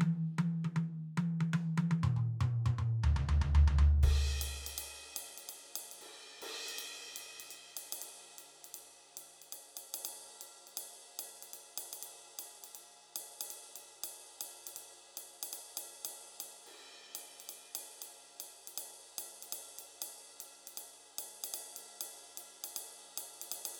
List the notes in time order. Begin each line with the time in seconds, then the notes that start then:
0.01 high tom
0.39 high tom
0.65 high tom
0.76 high tom
1.18 high tom
1.41 high tom
1.54 high tom
1.78 high tom
1.91 high tom
2.03 mid tom
2.17 mid tom
2.41 mid tom
2.66 mid tom
2.79 mid tom
3.04 floor tom
3.16 floor tom
3.29 floor tom
3.42 floor tom
3.55 floor tom
3.68 floor tom
3.79 floor tom
4.03 kick, ride
4.41 ride
4.67 ride
4.78 ride
5.16 ride
5.38 ride
5.49 ride
5.76 ride
5.92 ride
6.01 ride
6.42 ride
6.69 ride
7.16 ride
7.40 ride
7.51 ride bell
7.77 ride
7.93 ride
8.02 ride
8.39 ride
8.65 ride
8.74 ride
9.17 ride
9.42 ride
9.53 ride
9.77 ride
9.94 ride
10.05 ride
10.41 ride
10.67 ride
11.19 ride
11.43 ride
11.54 ride
11.78 ride
11.93 ride
12.03 ride
12.39 ride
12.64 ride
12.75 ride
13.16 ride
13.41 ride
13.51 ride
13.76 ride
14.04 ride
14.41 ride
14.67 ride
14.76 ride
15.17 ride
15.43 ride
15.53 ride
15.77 ride
16.05 ride
16.40 ride
16.67 ride
16.76 ride
17.15 ride
17.40 ride
17.49 ride
17.75 ride
18.02 ride
18.40 ride
18.68 ride
18.78 ride
19.18 ride
19.43 ride
19.53 ride
19.79 ride
20.02 ride
20.40 ride
20.68 ride
20.78 ride
21.19 ride
21.44 ride
21.76 ride
22.01 ride
22.38 ride
22.64 ride
22.76 ride
23.18 ride
23.42 ride
23.52 ride
23.65 ride
23.75 ride